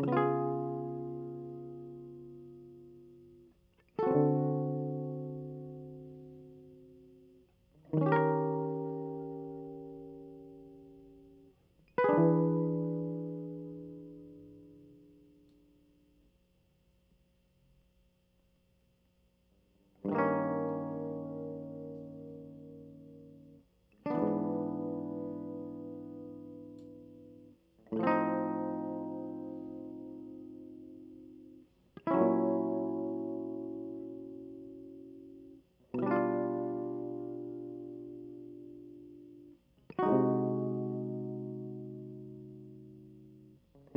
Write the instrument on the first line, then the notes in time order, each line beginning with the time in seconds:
electric guitar
0.00 C#3
0.04 E3 B3
0.12 F4
0.17 G#4
3.99 F#4 A4
4.07 C4
4.16 D3
7.94 D#3
8.01 C#4
8.06 G4
8.12 A#4
8.16 C#5
11.98 B4
12.04 G#4
12.09 D4
12.18 E3
20.06 G2
20.12 D#3 A#3
20.18 C#4
24.06 D4
24.10 B3
24.15 E3
24.23 G#2
27.94 A2
28.00 F3 C4
28.07 D#4
32.07 C#4 E4
32.14 F#3
32.22 A#2
35.95 B2
36.01 A2 G3
36.06 D4 E4
36.11 F4
36.16 A4
39.99 D#4 F#4
40.06 G#3
40.13 C3